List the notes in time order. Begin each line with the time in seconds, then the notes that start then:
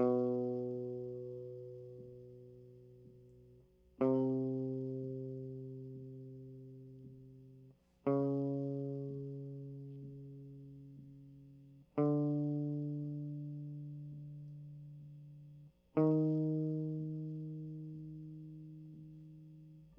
0.00 B2
4.03 C3
8.09 C#3
11.99 D3
15.98 D#3